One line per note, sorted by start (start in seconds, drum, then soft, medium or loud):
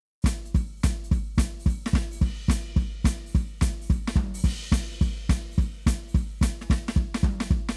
0.22 kick loud
0.22 snare loud
0.22 hi-hat pedal medium
0.26 closed hi-hat loud
0.45 closed hi-hat soft
0.54 open hi-hat medium
0.54 kick loud
0.80 closed hi-hat loud
0.80 snare loud
0.80 hi-hat pedal medium
0.84 kick loud
1.04 open hi-hat medium
1.11 open hi-hat medium
1.11 kick loud
1.35 closed hi-hat loud
1.35 kick loud
1.35 snare loud
1.35 hi-hat pedal medium
1.59 open hi-hat medium
1.66 open hi-hat medium
1.66 kick loud
1.86 snare loud
1.86 hi-hat pedal soft
1.93 kick loud
1.93 snare loud
2.11 open hi-hat medium
2.21 kick loud
2.21 crash medium
2.47 closed hi-hat loud
2.47 kick loud
2.47 snare loud
2.47 hi-hat pedal medium
2.76 open hi-hat soft
2.76 kick loud
3.03 closed hi-hat loud
3.03 kick loud
3.03 snare loud
3.03 hi-hat pedal soft
3.26 open hi-hat medium
3.34 open hi-hat medium
3.34 kick loud
3.60 closed hi-hat loud
3.60 kick loud
3.60 snare loud
3.60 hi-hat pedal soft
3.81 open hi-hat medium
3.86 kick loud
3.86 snare soft
3.90 open hi-hat medium
4.07 snare loud
4.07 hi-hat pedal soft
4.16 kick loud
4.16 high tom loud
4.34 open hi-hat loud
4.44 kick loud
4.44 crash loud
4.71 closed hi-hat loud
4.71 kick loud
4.71 snare loud
4.71 hi-hat pedal soft
4.93 open hi-hat soft
5.00 open hi-hat medium
5.00 kick loud
5.29 closed hi-hat medium
5.29 kick loud
5.29 snare loud
5.29 hi-hat pedal soft
5.51 open hi-hat medium
5.58 open hi-hat medium
5.58 kick loud
5.86 closed hi-hat loud
5.86 kick loud
5.86 snare loud
5.86 hi-hat pedal soft
6.07 open hi-hat medium
6.14 open hi-hat medium
6.14 kick loud
6.41 closed hi-hat loud
6.41 kick loud
6.41 snare loud
6.41 hi-hat pedal soft
6.61 snare medium
6.66 kick loud
6.66 hi-hat pedal soft
6.71 snare loud
6.88 snare loud
6.88 hi-hat pedal soft
6.96 kick loud
7.14 snare loud
7.20 kick loud
7.20 hi-hat pedal soft
7.24 high tom loud
7.40 snare loud
7.47 kick loud
7.47 hi-hat pedal soft
7.69 snare loud
7.73 hi-hat pedal soft